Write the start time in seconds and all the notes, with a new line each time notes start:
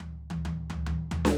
0.05 floor tom, high tom
0.30 floor tom, high tom
0.45 floor tom, high tom
0.70 floor tom, high tom
0.87 floor tom, high tom
1.11 floor tom, high tom
1.25 snare
1.28 snare